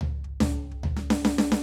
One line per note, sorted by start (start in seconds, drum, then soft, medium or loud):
0.01 floor tom loud
0.24 kick soft
0.40 snare loud
0.40 floor tom loud
0.49 snare soft
0.71 kick soft
0.83 floor tom loud
0.97 snare medium
1.10 snare loud
1.25 snare loud
1.38 snare loud
1.52 snare loud